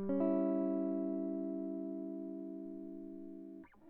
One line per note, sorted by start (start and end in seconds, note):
0.00 3.63 G3
0.09 3.65 C#4
0.21 3.66 E4